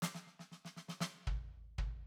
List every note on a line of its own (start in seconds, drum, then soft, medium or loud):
0.02 snare medium
0.02 hi-hat pedal medium
0.15 snare soft
0.27 snare soft
0.40 snare soft
0.52 snare soft
0.65 snare soft
0.77 snare soft
0.89 snare soft
1.01 snare medium
1.27 kick medium
1.27 floor tom medium
1.79 kick medium
1.79 floor tom medium